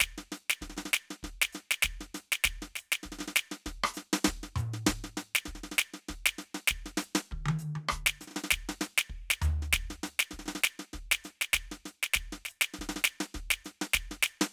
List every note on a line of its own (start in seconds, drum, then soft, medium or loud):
0.01 kick soft
0.01 snare loud
0.18 snare soft
0.32 snare medium
0.32 hi-hat pedal soft
0.50 snare loud
0.62 kick soft
0.62 snare soft
0.70 snare soft
0.77 snare soft
0.77 snare medium
0.86 snare medium
0.94 snare loud
0.94 hi-hat pedal soft
1.11 snare soft
1.24 kick soft
1.24 snare soft
1.42 snare loud
1.53 snare soft
1.53 hi-hat pedal soft
1.71 snare loud
1.83 kick soft
1.83 snare loud
2.01 snare soft
2.15 snare medium
2.15 hi-hat pedal medium
2.33 snare loud
2.45 kick soft
2.45 snare loud
2.63 snare soft
2.76 snare medium
2.76 hi-hat pedal medium
2.93 snare loud
3.04 kick soft
3.04 snare soft
3.13 snare soft
3.19 snare soft
3.21 snare medium
3.28 snare medium
3.36 snare loud
3.36 hi-hat pedal soft
3.52 snare medium
3.67 kick soft
3.67 snare medium
3.84 cross-stick loud
3.94 snare medium
3.94 hi-hat pedal medium
4.14 snare loud
4.25 kick soft
4.25 snare loud
4.44 snare soft
4.56 hi-hat pedal soft
4.56 mid tom loud
4.74 snare soft
4.87 kick soft
4.87 snare loud
5.05 snare soft
5.18 snare medium
5.18 hi-hat pedal soft
5.36 snare loud
5.46 kick soft
5.46 snare soft
5.56 snare soft
5.64 snare soft
5.72 snare soft
5.79 snare loud
5.79 hi-hat pedal soft
5.94 snare soft
6.09 kick soft
6.09 snare medium
6.26 snare loud
6.39 snare soft
6.39 hi-hat pedal soft
6.55 snare medium
6.68 kick soft
6.68 snare loud
6.86 snare soft
6.98 snare medium
6.98 hi-hat pedal medium
7.16 snare loud
7.32 kick soft
7.32 high tom medium
7.46 high tom loud
7.49 high tom loud
7.59 hi-hat pedal soft
7.76 high tom medium
7.89 kick soft
7.89 cross-stick loud
8.07 snare loud
8.21 snare soft
8.21 hi-hat pedal soft
8.28 snare soft
8.32 snare soft
8.37 snare medium
8.44 snare medium
8.51 kick soft
8.51 snare loud
8.70 snare medium
8.82 snare medium
8.82 hi-hat pedal soft
8.98 snare loud
9.10 kick soft
9.31 snare loud
9.42 floor tom loud
9.42 hi-hat pedal medium
9.63 snare soft
9.73 kick soft
9.73 snare loud
9.80 kick soft
9.91 snare soft
10.04 snare medium
10.04 hi-hat pedal soft
10.20 snare loud
10.32 kick soft
10.32 snare soft
10.40 snare soft
10.46 snare soft
10.49 snare medium
10.56 snare medium
10.64 snare loud
10.64 hi-hat pedal soft
10.80 snare soft
10.94 kick soft
10.94 snare soft
11.12 snare loud
11.25 snare soft
11.25 hi-hat pedal soft
11.42 snare medium
11.54 kick soft
11.54 snare loud
11.72 snare soft
11.86 snare soft
11.86 hi-hat pedal soft
12.04 snare medium
12.14 kick soft
12.14 snare loud
12.33 snare soft
12.46 snare medium
12.46 hi-hat pedal soft
12.62 snare loud
12.74 snare soft
12.79 kick soft
12.79 snare soft
12.90 snare medium
12.97 snare medium
13.05 snare loud
13.05 hi-hat pedal soft
13.21 snare medium
13.35 kick soft
13.35 snare soft
13.51 snare loud
13.65 snare soft
13.65 hi-hat pedal soft
13.82 snare medium
13.94 kick soft
13.94 snare loud
14.12 snare soft
14.23 snare loud
14.23 hi-hat pedal soft
14.42 snare loud